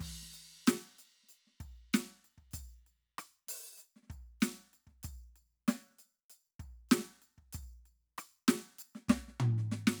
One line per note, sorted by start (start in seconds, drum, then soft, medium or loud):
0.01 kick soft
0.01 crash medium
0.22 snare soft
0.28 snare soft
0.31 snare soft
0.31 percussion soft
0.35 snare soft
0.67 snare loud
0.67 percussion medium
0.99 percussion soft
1.24 snare soft
1.29 percussion soft
1.47 snare soft
1.52 snare soft
1.61 kick soft
1.61 percussion soft
1.93 snare loud
1.93 percussion medium
2.25 percussion soft
2.38 kick soft
2.51 percussion soft
2.54 kick soft
2.54 percussion medium
2.59 kick soft
2.87 percussion soft
3.19 cross-stick medium
3.19 percussion medium
3.47 snare soft
3.47 percussion loud
3.78 percussion soft
3.80 percussion soft
3.96 snare soft
4.03 snare soft
4.07 kick soft
4.07 snare soft
4.11 snare soft
4.11 percussion soft
4.41 snare medium
4.41 percussion soft
4.43 percussion medium
4.74 percussion soft
4.87 kick soft
4.87 snare soft
5.03 kick soft
5.03 percussion medium
5.36 percussion soft
5.68 snare loud
5.68 percussion medium
5.91 snare soft
5.99 percussion soft
6.30 percussion soft
6.60 kick soft
6.60 percussion soft
6.89 snare loud
6.89 percussion soft
6.92 percussion medium
6.99 snare soft
7.22 percussion soft
7.38 kick soft
7.53 kick soft
7.53 percussion medium
7.63 kick soft
7.86 percussion soft
8.18 cross-stick medium
8.18 percussion medium
8.48 snare loud
8.48 percussion medium
8.58 snare soft
8.79 percussion medium
8.95 snare soft
9.09 kick soft
9.09 snare loud
9.15 kick soft
9.17 kick soft
9.28 snare soft
9.40 floor tom loud
9.58 snare soft
9.72 snare medium
9.87 snare loud